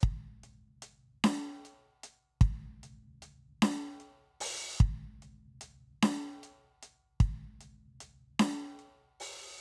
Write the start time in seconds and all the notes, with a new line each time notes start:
0.01 kick, hi-hat pedal
0.05 closed hi-hat
0.44 closed hi-hat
0.83 closed hi-hat
1.25 snare, closed hi-hat
1.66 closed hi-hat
2.04 closed hi-hat
2.42 kick, closed hi-hat
2.84 closed hi-hat
3.23 closed hi-hat
3.63 closed hi-hat, snare
4.00 closed hi-hat
4.41 open hi-hat
4.79 kick, hi-hat pedal
4.84 closed hi-hat
5.23 closed hi-hat
5.62 closed hi-hat
6.03 closed hi-hat, snare
6.44 closed hi-hat
6.83 closed hi-hat
7.21 kick, closed hi-hat
7.61 closed hi-hat
8.01 closed hi-hat
8.40 snare, closed hi-hat
8.79 closed hi-hat
9.21 open hi-hat